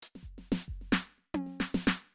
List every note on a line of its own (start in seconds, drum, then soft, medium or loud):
0.02 closed hi-hat loud
0.15 snare soft
0.23 kick soft
0.38 snare soft
0.52 snare loud
0.68 kick soft
0.81 snare soft
0.92 snare loud
1.18 snare soft
1.34 high tom loud
1.46 snare soft
1.60 snare medium
1.74 snare loud
1.87 snare loud